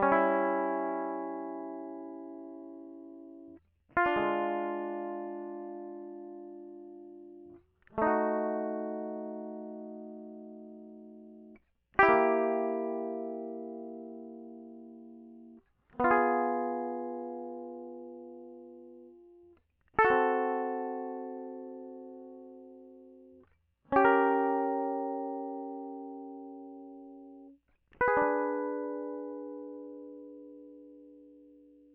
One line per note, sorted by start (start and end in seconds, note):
0.00 3.59 G3
0.00 3.59 C#4
0.12 3.61 E4
3.97 7.63 F4
4.07 7.60 D4
4.17 7.63 G#3
4.22 4.58 D3
7.99 11.59 A3
7.99 11.59 D#4
8.07 11.61 F#4
11.99 15.63 E4
11.99 15.63 G4
12.09 15.61 A#3
16.00 19.27 B3
16.05 19.59 F4
16.11 18.69 G#4
19.99 23.12 A4
20.05 23.49 F#4
20.11 23.46 C4
23.93 27.59 C#4
23.93 27.51 G4
24.05 27.51 A#4
28.01 31.95 B4
28.08 31.90 G#4
28.18 31.95 D4
28.23 28.30 G#3